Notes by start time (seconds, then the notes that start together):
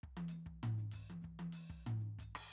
0.03 kick
0.17 high tom
0.28 snare, percussion
0.46 kick
0.63 floor tom
0.78 snare
0.91 kick, snare, percussion
1.10 high tom
1.21 kick, snare
1.39 high tom
1.52 snare, percussion
1.69 kick
1.86 floor tom
1.99 snare
2.19 kick, percussion
2.35 cross-stick, ride